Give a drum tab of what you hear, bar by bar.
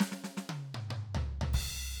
CC |------------x---|
SD |oooo------------|
T1 |----o-----------|
T2 |------oo--------|
FT |---------o-o----|
BD |------------o---|